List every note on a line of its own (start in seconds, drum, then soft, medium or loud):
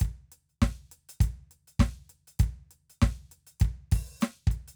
0.01 kick loud
0.01 closed hi-hat loud
0.32 closed hi-hat medium
0.49 closed hi-hat soft
0.62 kick loud
0.62 snare loud
0.92 closed hi-hat medium
1.09 closed hi-hat medium
1.20 kick loud
1.20 closed hi-hat loud
1.51 closed hi-hat medium
1.67 closed hi-hat soft
1.79 kick loud
1.79 snare loud
2.09 closed hi-hat medium
2.27 closed hi-hat soft
2.39 kick loud
2.39 closed hi-hat loud
2.71 closed hi-hat medium
2.90 closed hi-hat soft
3.02 kick loud
3.02 snare loud
3.31 closed hi-hat medium
3.47 closed hi-hat medium
3.60 kick loud
3.60 closed hi-hat loud
3.92 kick loud
3.92 open hi-hat loud
4.20 closed hi-hat medium
4.20 snare loud
4.20 hi-hat pedal loud
4.47 kick loud
4.51 closed hi-hat medium
4.68 closed hi-hat medium